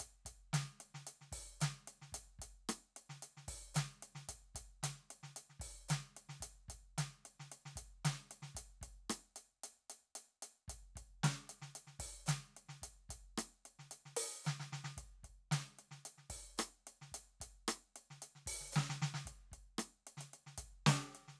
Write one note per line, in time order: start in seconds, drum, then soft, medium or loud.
0.00 kick soft
0.00 closed hi-hat medium
0.25 kick soft
0.25 closed hi-hat medium
0.53 snare medium
0.53 closed hi-hat medium
0.58 snare soft
0.80 closed hi-hat soft
0.94 snare soft
1.07 closed hi-hat medium
1.21 snare soft
1.32 kick soft
1.32 open hi-hat medium
1.60 snare medium
1.60 closed hi-hat medium
1.60 hi-hat pedal medium
1.87 closed hi-hat soft
2.01 snare soft
2.12 kick soft
2.12 closed hi-hat medium
2.39 kick soft
2.39 closed hi-hat medium
2.69 cross-stick medium
2.69 closed hi-hat medium
2.96 closed hi-hat soft
3.09 snare soft
3.22 closed hi-hat medium
3.37 snare soft
3.48 kick soft
3.48 open hi-hat medium
3.74 snare medium
3.74 closed hi-hat medium
3.74 hi-hat pedal medium
4.02 closed hi-hat soft
4.15 snare soft
4.28 kick soft
4.28 closed hi-hat medium
4.55 kick soft
4.55 closed hi-hat medium
4.83 snare medium
4.83 closed hi-hat medium
5.10 closed hi-hat soft
5.23 snare soft
5.36 closed hi-hat medium
5.49 snare soft
5.59 kick soft
5.59 open hi-hat medium
5.89 snare medium
5.89 closed hi-hat medium
5.89 hi-hat pedal medium
6.17 closed hi-hat soft
6.29 snare soft
6.40 kick soft
6.40 closed hi-hat medium
6.68 kick soft
6.68 closed hi-hat medium
6.98 snare medium
6.98 closed hi-hat medium
7.25 closed hi-hat soft
7.40 snare soft
7.52 closed hi-hat soft
7.65 snare soft
7.76 kick soft
7.76 closed hi-hat medium
8.05 snare medium
8.05 closed hi-hat medium
8.31 closed hi-hat soft
8.42 snare soft
8.55 kick soft
8.55 closed hi-hat medium
8.81 kick soft
8.81 closed hi-hat soft
9.10 cross-stick medium
9.10 closed hi-hat medium
9.36 closed hi-hat medium
9.64 closed hi-hat medium
9.90 closed hi-hat medium
10.15 closed hi-hat medium
10.42 closed hi-hat medium
10.68 kick soft
10.68 closed hi-hat medium
10.96 kick soft
10.96 closed hi-hat soft
11.23 snare medium
11.23 closed hi-hat medium
11.49 closed hi-hat medium
11.62 snare soft
11.75 closed hi-hat medium
11.87 snare soft
11.99 kick soft
11.99 open hi-hat medium
12.26 snare medium
12.26 closed hi-hat medium
12.26 hi-hat pedal medium
12.56 closed hi-hat soft
12.69 snare soft
12.82 kick soft
12.82 closed hi-hat medium
13.09 kick soft
13.09 closed hi-hat medium
13.38 cross-stick medium
13.38 closed hi-hat medium
13.65 closed hi-hat soft
13.79 snare soft
13.91 closed hi-hat medium
14.05 snare soft
14.17 open hi-hat loud
14.44 snare medium
14.44 hi-hat pedal soft
14.60 snare soft
14.72 snare soft
14.84 snare soft
14.97 kick soft
14.97 closed hi-hat soft
15.23 kick soft
15.23 closed hi-hat soft
15.51 snare medium
15.51 closed hi-hat medium
15.79 closed hi-hat soft
15.91 snare soft
16.05 closed hi-hat medium
16.18 snare soft
16.30 kick soft
16.30 open hi-hat medium
16.58 cross-stick medium
16.58 closed hi-hat medium
16.58 hi-hat pedal medium
16.87 closed hi-hat soft
17.01 snare soft
17.12 kick soft
17.12 closed hi-hat medium
17.40 kick soft
17.40 closed hi-hat medium
17.68 cross-stick medium
17.68 closed hi-hat medium
17.96 closed hi-hat soft
18.10 snare soft
18.22 closed hi-hat medium
18.35 snare soft
18.46 kick soft
18.46 open hi-hat medium
18.60 snare soft
18.72 snare medium
18.72 hi-hat pedal medium
18.89 snare medium
19.02 snare medium
19.14 snare medium
19.25 kick soft
19.25 closed hi-hat soft
19.52 kick soft
19.52 closed hi-hat soft
19.78 cross-stick medium
19.78 closed hi-hat medium
20.07 closed hi-hat soft
20.17 snare soft
20.17 closed hi-hat soft
20.33 closed hi-hat soft
20.46 snare soft
20.58 kick soft
20.58 closed hi-hat medium
20.86 snare medium
20.86 closed hi-hat medium
20.93 snare soft
21.15 closed hi-hat soft
21.28 snare soft